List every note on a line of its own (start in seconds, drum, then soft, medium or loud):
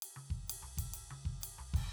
0.02 hi-hat pedal soft
0.02 ride medium
0.16 high tom soft
0.30 kick soft
0.47 hi-hat pedal soft
0.47 ride loud
0.62 floor tom soft
0.77 kick soft
0.77 ride medium
0.94 hi-hat pedal medium
0.94 ride medium
1.10 high tom soft
1.25 kick soft
1.41 hi-hat pedal medium
1.41 ride medium
1.58 floor tom soft
1.74 kick medium
1.74 ride medium